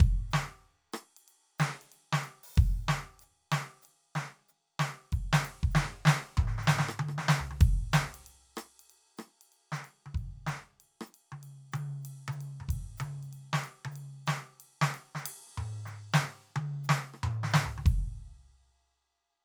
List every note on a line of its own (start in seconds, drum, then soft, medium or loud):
0.01 kick loud
0.01 hi-hat pedal soft
0.01 ride soft
0.31 snare loud
0.31 hi-hat pedal medium
0.93 cross-stick medium
0.93 hi-hat pedal medium
0.93 ride soft
1.17 ride soft
1.29 ride soft
1.59 snare loud
1.59 hi-hat pedal medium
1.59 ride medium
1.82 ride soft
1.93 ride soft
2.13 snare loud
2.13 hi-hat pedal soft
2.24 ride soft
2.44 open hi-hat medium
2.56 kick loud
2.56 ride soft
2.88 snare loud
2.88 hi-hat pedal soft
3.20 hi-hat pedal medium
3.20 ride soft
3.53 snare loud
3.53 ride medium
3.83 hi-hat pedal medium
3.83 ride soft
4.16 snare medium
4.16 ride soft
4.49 hi-hat pedal soft
4.80 snare medium
4.80 ride soft
5.13 kick medium
5.13 ride soft
5.34 snare loud
5.43 hi-hat pedal soft
5.43 ride medium
5.64 kick medium
5.72 hi-hat pedal medium
5.76 snare loud
6.06 snare loud
6.08 snare loud
6.38 kick medium
6.38 mid tom loud
6.48 snare soft
6.59 snare medium
6.63 hi-hat pedal medium
6.68 snare loud
6.79 snare loud
6.89 cross-stick medium
6.89 hi-hat pedal medium
7.00 high tom loud
7.09 cross-stick medium
7.19 snare medium
7.29 snare loud
7.40 floor tom medium
7.52 high tom medium
7.61 kick loud
7.61 ride medium
7.93 snare loud
7.93 hi-hat pedal medium
7.93 ride medium
8.15 ride medium
8.27 ride soft
8.57 cross-stick medium
8.57 hi-hat pedal medium
8.57 ride medium
8.80 ride soft
8.91 ride soft
9.18 cross-stick medium
9.18 hi-hat pedal medium
9.18 ride soft
9.42 ride soft
9.53 ride soft
9.73 snare medium
9.73 hi-hat pedal medium
9.85 ride soft
10.07 high tom medium
10.15 kick medium
10.15 ride soft
10.47 snare medium
10.47 hi-hat pedal medium
10.81 ride soft
11.02 cross-stick medium
11.07 hi-hat pedal medium
11.15 ride soft
11.33 high tom medium
11.44 ride soft
11.73 hi-hat pedal medium
11.73 high tom loud
11.73 ride soft
12.02 hi-hat pedal soft
12.02 ride medium
12.29 hi-hat pedal medium
12.29 high tom loud
12.41 ride soft
12.61 mid tom medium
12.69 kick medium
12.69 ride medium
12.98 hi-hat pedal medium
12.98 high tom loud
12.98 ride soft
13.24 hi-hat pedal soft
13.24 ride soft
13.34 ride soft
13.54 snare medium
13.54 hi-hat pedal medium
13.65 ride soft
13.86 high tom medium
13.92 hi-hat pedal medium
13.96 ride soft
14.27 snare medium
14.27 hi-hat pedal medium
14.27 ride soft
14.61 ride medium
14.82 snare loud
14.82 hi-hat pedal soft
14.95 ride soft
15.16 snare medium
15.16 hi-hat pedal medium
15.26 ride loud
15.48 cross-stick soft
15.58 mid tom loud
15.86 snare soft
15.86 hi-hat pedal medium
16.13 snare loud
16.13 hi-hat pedal medium
16.57 high tom loud
16.85 hi-hat pedal medium
16.90 snare loud
17.14 cross-stick soft
17.24 mid tom loud
17.32 cross-stick soft
17.44 snare medium
17.51 snare loud
17.51 hi-hat pedal medium
17.65 kick soft
17.65 floor tom medium
17.79 high tom medium
17.86 kick loud
17.86 ride medium